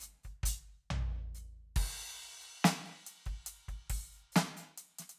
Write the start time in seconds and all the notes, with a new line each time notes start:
0.01 closed hi-hat, hi-hat pedal
0.24 closed hi-hat, kick
0.44 open hi-hat, kick
0.91 floor tom
1.35 hi-hat pedal
1.76 kick, crash
2.41 closed hi-hat
2.65 closed hi-hat, snare
2.86 closed hi-hat
3.07 closed hi-hat
3.26 kick, closed hi-hat
3.47 closed hi-hat
3.69 kick, closed hi-hat
3.90 kick, open hi-hat
4.12 open hi-hat
4.32 snare, hi-hat pedal
4.37 closed hi-hat
4.57 closed hi-hat
4.78 closed hi-hat
4.99 snare, closed hi-hat
5.10 closed hi-hat